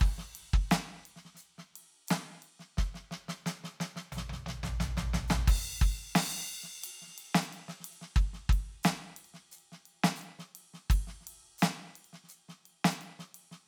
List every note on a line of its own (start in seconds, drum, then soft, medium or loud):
0.01 kick loud
0.01 crash medium
0.19 snare medium
0.36 ride medium
0.54 kick loud
0.72 snare loud
0.72 ride medium
1.06 ride soft
1.17 snare soft
1.17 ride soft
1.26 snare soft
1.35 snare soft
1.35 hi-hat pedal medium
1.42 ride soft
1.59 snare soft
1.77 ride medium
2.08 snare loud
2.08 hi-hat pedal soft
2.08 ride medium
2.43 ride soft
2.60 snare soft
2.78 kick medium
2.78 snare medium
2.95 snare soft
3.12 snare medium
3.29 snare medium
3.47 snare loud
3.47 hi-hat pedal medium
3.65 snare medium
3.81 snare loud
3.97 snare medium
4.13 floor tom medium
4.13 hi-hat pedal medium
4.18 snare medium
4.30 snare medium
4.30 floor tom medium
4.47 snare medium
4.47 floor tom loud
4.64 snare medium
4.64 floor tom loud
4.81 snare medium
4.81 floor tom loud
4.81 hi-hat pedal soft
4.98 snare medium
4.98 floor tom loud
5.14 snare loud
5.14 floor tom loud
5.29 snare loud
5.29 floor tom loud
5.29 hi-hat pedal soft
5.48 kick loud
5.48 hi-hat pedal soft
5.48 ride medium
5.48 crash loud
5.82 kick loud
6.16 snare loud
6.16 crash loud
6.64 snare soft
6.83 hi-hat pedal medium
6.83 ride loud
7.02 snare soft
7.08 snare soft
7.19 ride medium
7.26 ride soft
7.36 snare loud
7.42 hi-hat pedal medium
7.54 ride soft
7.69 snare medium
7.81 snare soft
7.85 ride medium
7.93 ride soft
8.02 snare soft
8.17 kick loud
8.17 ride soft
8.34 snare soft
8.50 kick loud
8.50 ride medium
8.84 snare loud
8.84 hi-hat pedal medium
8.84 ride medium
9.17 ride medium
9.25 ride soft
9.35 snare soft
9.52 hi-hat pedal medium
9.52 ride soft
9.59 ride soft
9.73 snare soft
9.87 ride soft
10.05 snare loud
10.17 hi-hat pedal medium
10.22 ride soft
10.40 snare soft
10.56 ride medium
10.74 snare soft
10.91 kick loud
10.91 ride medium
10.97 hi-hat pedal soft
11.08 snare soft
11.22 snare soft
11.28 ride medium
11.59 hi-hat pedal medium
11.59 ride medium
11.63 snare loud
11.96 ride soft
12.05 ride soft
12.14 snare soft
12.24 snare soft
12.30 hi-hat pedal medium
12.30 ride soft
12.49 snare soft
12.66 ride soft
12.85 snare loud
12.91 hi-hat pedal medium
13.02 ride soft
13.20 snare medium
13.35 ride medium
13.52 snare soft